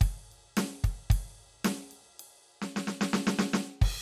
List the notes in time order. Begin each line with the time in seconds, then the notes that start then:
0.01 kick, ride
0.32 ride
0.57 snare, ride
0.84 kick, ride
1.10 kick, ride
1.65 snare, ride
1.91 ride
2.20 ride
2.62 snare
2.76 snare
2.87 snare
3.01 snare
3.13 snare
3.27 snare
3.39 snare
3.54 snare
3.82 kick, crash